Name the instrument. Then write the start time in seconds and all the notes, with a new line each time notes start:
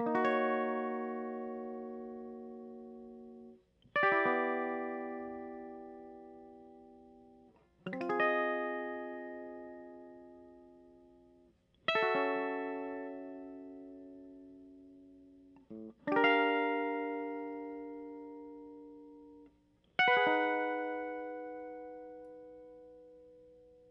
electric guitar
0.00 A#3
0.06 D#4
0.15 F#4
3.96 D5
4.03 G4
4.12 E4
4.26 B3
7.87 F#3
7.94 C4 A4
8.01 F4 B4
8.09 G#4
8.20 D#5
11.88 E5
11.95 A4
12.03 F#4
12.15 C#4
15.72 A2
16.08 D4
16.12 G4
16.16 A#4
16.24 F5
19.99 F#5
20.08 B4
20.17 G#4
20.27 D#4